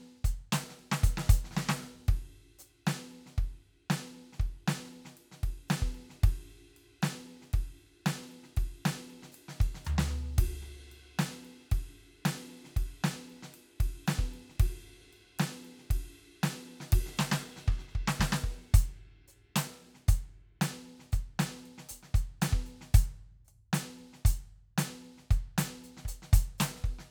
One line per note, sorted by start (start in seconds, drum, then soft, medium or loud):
0.15 snare soft
0.25 closed hi-hat medium
0.25 kick medium
0.52 closed hi-hat loud
0.52 snare loud
0.70 snare soft
0.79 closed hi-hat soft
0.92 snare loud
1.04 closed hi-hat loud
1.04 kick loud
1.17 snare loud
1.29 closed hi-hat loud
1.29 kick loud
1.45 snare soft
1.51 snare soft
1.54 snare soft
1.54 hi-hat pedal soft
1.57 snare loud
1.69 snare loud
1.82 snare soft
2.08 kick medium
2.08 ride medium
2.59 hi-hat pedal medium
2.59 ride soft
2.87 snare loud
2.87 ride soft
3.11 ride soft
3.26 snare soft
3.38 kick medium
3.38 ride soft
3.90 snare loud
3.90 ride soft
4.06 snare soft
4.33 snare soft
4.40 kick medium
4.40 ride soft
4.68 snare loud
4.68 ride soft
4.85 snare soft
4.94 ride soft
5.05 snare soft
5.17 ride soft
5.32 snare soft
5.43 kick medium
5.43 ride medium
5.69 snare loud
5.69 hi-hat pedal soft
5.69 ride medium
5.82 kick medium
5.95 ride soft
6.10 snare soft
6.24 kick loud
6.24 ride medium
6.51 ride soft
6.77 ride soft
7.03 snare loud
7.03 ride soft
7.29 ride soft
7.42 snare soft
7.53 kick medium
7.53 ride medium
7.80 ride soft
8.06 snare loud
8.06 ride medium
8.22 snare soft
8.32 ride soft
8.44 snare soft
8.57 kick medium
8.57 ride medium
8.85 snare loud
8.85 ride medium
9.10 ride soft
9.23 snare soft
9.32 hi-hat pedal soft
9.32 ride medium
9.49 snare medium
9.60 kick medium
9.60 ride bell medium
9.75 snare soft
9.85 floor tom loud
9.85 hi-hat pedal medium
9.98 snare loud
10.11 floor tom soft
10.27 snare soft
10.38 kick medium
10.38 ride loud
10.62 snare soft
10.92 ride soft
11.19 snare loud
11.19 ride medium
11.32 snare soft
11.45 ride soft
11.60 snare soft
11.72 kick medium
11.72 ride medium
12.25 snare loud
12.25 ride medium
12.51 ride soft
12.65 snare soft
12.77 kick medium
12.77 ride medium
13.04 snare loud
13.04 ride soft
13.30 ride soft
13.43 snare medium
13.54 ride soft
13.80 kick medium
13.80 ride medium
14.08 snare loud
14.08 ride medium
14.19 kick medium
14.19 snare soft
14.34 ride soft
14.49 snare soft
14.60 kick loud
14.60 ride loud
14.88 ride soft
15.13 ride soft
15.39 snare loud
15.39 ride medium
15.65 ride soft
15.79 snare soft
15.91 kick medium
15.91 ride medium
16.43 snare loud
16.43 ride medium
16.80 snare medium
16.92 kick loud
16.92 ride loud
17.06 snare soft
17.12 snare soft
17.16 snare soft
17.16 hi-hat pedal medium
17.19 snare loud
17.32 snare loud
17.56 snare soft
17.68 kick medium
17.68 cross-stick medium
17.79 snare soft
17.88 snare soft
17.95 kick medium
18.08 snare loud
18.20 kick medium
18.20 snare loud
18.32 snare loud
18.44 kick medium
18.74 closed hi-hat loud
18.74 kick loud
19.28 hi-hat pedal soft
19.56 closed hi-hat loud
19.56 snare loud
19.95 snare soft
20.08 closed hi-hat loud
20.08 kick loud
20.61 closed hi-hat loud
20.61 snare loud
20.88 closed hi-hat soft
21.00 snare soft
21.12 closed hi-hat medium
21.12 kick medium
21.39 closed hi-hat medium
21.39 snare loud
21.56 snare soft
21.66 closed hi-hat soft
21.78 snare soft
21.89 closed hi-hat medium
21.89 kick soft
22.03 snare soft
22.14 closed hi-hat medium
22.14 kick medium
22.42 closed hi-hat loud
22.42 snare loud
22.53 kick medium
22.58 snare soft
22.66 closed hi-hat soft
22.81 snare soft
22.94 closed hi-hat loud
22.94 kick loud
23.45 closed hi-hat soft
23.45 hi-hat pedal soft
23.73 closed hi-hat loud
23.73 snare loud
23.99 kick soft
23.99 closed hi-hat soft
24.13 snare soft
24.25 closed hi-hat loud
24.25 kick loud
24.78 closed hi-hat loud
24.78 snare loud
25.05 closed hi-hat soft
25.18 snare soft
25.31 closed hi-hat medium
25.31 kick loud
25.58 closed hi-hat loud
25.58 snare loud
25.84 closed hi-hat soft
25.97 snare soft
26.05 closed hi-hat medium
26.05 kick soft
26.22 snare soft
26.33 closed hi-hat loud
26.33 kick loud
26.58 closed hi-hat loud
26.58 snare loud
26.58 hi-hat pedal soft
26.76 snare soft
26.84 kick medium
26.84 closed hi-hat soft
26.99 snare soft